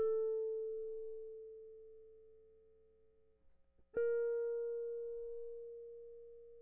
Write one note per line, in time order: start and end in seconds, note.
0.00 2.33 A4
3.97 6.62 A#4